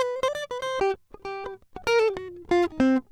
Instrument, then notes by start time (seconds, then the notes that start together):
acoustic guitar
0.00 B4
0.24 C5
0.34 D5
0.52 B4
0.64 C5
0.82 G4
1.26 G4
1.45 G4
1.88 A#4
2.01 A4
2.10 F#4
2.53 F4
2.65 D#4
2.81 C4